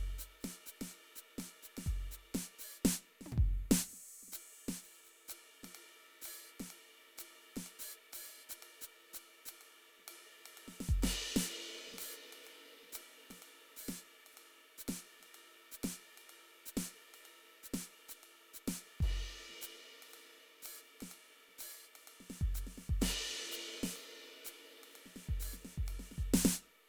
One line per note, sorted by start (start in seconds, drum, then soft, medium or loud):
0.18 hi-hat pedal loud
0.40 snare soft
0.40 hi-hat pedal soft
0.44 ride loud
0.66 hi-hat pedal loud
0.81 snare soft
0.81 ride medium
0.89 hi-hat pedal soft
0.89 ride medium
1.15 hi-hat pedal medium
1.38 snare soft
1.38 hi-hat pedal soft
1.38 ride loud
1.62 hi-hat pedal medium
1.77 snare soft
1.77 ride medium
1.86 kick soft
1.86 hi-hat pedal soft
1.86 ride medium
2.11 hi-hat pedal medium
2.34 snare medium
2.34 hi-hat pedal soft
2.34 ride loud
2.58 hi-hat pedal loud
2.85 snare loud
3.21 snare soft
3.26 high tom soft
3.32 floor tom medium
3.38 kick medium
3.71 snare loud
3.71 crash loud
3.80 hi-hat pedal soft
3.93 snare soft
4.22 snare soft
4.28 snare soft
4.28 hi-hat pedal loud
4.33 ride loud
4.68 snare medium
4.68 ride medium
4.82 hi-hat pedal soft
5.04 hi-hat pedal soft
5.28 hi-hat pedal loud
5.28 ride loud
5.63 snare soft
5.63 ride medium
5.73 hi-hat pedal soft
5.73 ride loud
6.21 hi-hat pedal loud
6.25 ride loud
6.59 snare soft
6.59 ride medium
6.65 hi-hat pedal soft
6.70 ride medium
7.17 hi-hat pedal loud
7.17 ride loud
7.56 snare soft
7.56 ride medium
7.66 ride medium
7.79 hi-hat pedal loud
8.12 hi-hat pedal loud
8.12 ride loud
8.49 hi-hat pedal loud
8.49 ride medium
8.62 ride medium
8.81 hi-hat pedal loud
9.13 hi-hat pedal loud
9.13 ride medium
9.45 hi-hat pedal loud
9.45 ride loud
9.61 ride medium
9.99 snare soft
10.08 ride loud
10.46 ride loud
10.57 ride medium
10.68 snare soft
10.80 snare soft
10.89 kick medium
11.02 snare medium
11.02 ride loud
11.36 snare medium
11.51 ride medium
11.87 snare soft
11.91 snare soft
11.94 snare soft
11.98 hi-hat pedal loud
11.98 ride loud
12.32 ride medium
12.42 hi-hat pedal soft
12.47 ride medium
12.83 snare soft
12.92 hi-hat pedal loud
12.92 ride loud
13.30 snare soft
13.30 ride medium
13.36 hi-hat pedal soft
13.42 ride medium
13.76 hi-hat pedal medium
13.88 snare soft
13.88 ride loud
14.26 ride medium
14.30 hi-hat pedal soft
14.37 ride medium
14.78 hi-hat pedal loud
14.88 snare medium
14.88 ride loud
15.20 snare soft
15.20 ride medium
15.25 hi-hat pedal soft
15.34 ride medium
15.71 hi-hat pedal loud
15.83 snare medium
15.83 ride loud
16.17 hi-hat pedal soft
16.17 ride medium
16.29 ride medium
16.66 hi-hat pedal loud
16.77 snare medium
16.77 ride loud
17.14 hi-hat pedal soft
17.14 ride medium
17.25 ride medium
17.63 hi-hat pedal medium
17.74 snare medium
17.74 ride loud
18.08 hi-hat pedal loud
18.08 ride medium
18.23 ride medium
18.53 hi-hat pedal medium
18.68 snare medium
18.68 ride loud
19.00 kick medium
19.00 ride medium
19.49 snare soft
19.61 hi-hat pedal loud
19.61 ride medium
20.02 ride medium
20.08 hi-hat pedal soft
20.13 ride medium
20.62 hi-hat pedal medium
20.62 ride loud
20.84 hi-hat pedal soft
21.00 snare soft
21.00 ride medium
21.09 hi-hat pedal soft
21.09 ride medium
21.48 snare soft
21.58 hi-hat pedal loud
21.58 ride medium
21.95 ride medium
22.00 hi-hat pedal soft
22.07 ride medium
22.20 snare soft
22.30 snare soft
22.41 kick soft
22.54 hi-hat pedal loud
22.54 ride medium
22.66 snare soft
22.77 snare soft
22.89 kick soft
22.99 snare medium
22.99 hi-hat pedal soft
22.99 ride loud
23.42 snare soft
23.51 hi-hat pedal loud
23.51 ride medium
23.83 snare medium
23.83 ride medium
23.95 hi-hat pedal soft
23.95 ride medium
24.45 hi-hat pedal loud
24.45 ride loud
24.83 ride medium
24.90 hi-hat pedal soft
24.95 ride medium
25.05 snare soft
25.16 snare soft
25.29 kick soft
25.40 hi-hat pedal loud
25.40 ride medium
25.53 snare soft
25.59 hi-hat pedal soft
25.64 snare soft
25.78 kick soft
25.85 hi-hat pedal soft
25.85 ride loud
25.99 snare soft
26.11 snare soft
26.18 kick soft
26.34 snare loud
26.34 hi-hat pedal loud
26.45 snare loud